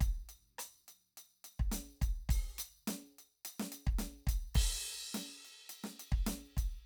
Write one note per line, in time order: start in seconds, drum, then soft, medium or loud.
0.01 kick medium
0.01 closed hi-hat medium
0.29 closed hi-hat medium
0.59 closed hi-hat loud
0.59 cross-stick medium
0.88 closed hi-hat medium
1.18 closed hi-hat medium
1.45 closed hi-hat medium
1.60 kick medium
1.72 closed hi-hat loud
1.72 snare medium
2.02 kick medium
2.02 closed hi-hat medium
2.29 kick medium
2.29 percussion loud
2.59 hi-hat pedal loud
2.88 snare medium
2.88 closed hi-hat loud
3.19 closed hi-hat medium
3.45 closed hi-hat loud
3.60 snare medium
3.72 closed hi-hat medium
3.87 kick medium
3.99 snare medium
3.99 closed hi-hat loud
4.27 kick medium
4.27 closed hi-hat loud
4.55 kick medium
4.55 crash loud
4.85 closed hi-hat soft
5.15 snare medium
5.15 closed hi-hat medium
5.45 closed hi-hat soft
5.70 closed hi-hat medium
5.84 snare medium
6.00 closed hi-hat medium
6.12 kick medium
6.27 snare medium
6.27 closed hi-hat loud
6.57 kick medium
6.57 closed hi-hat medium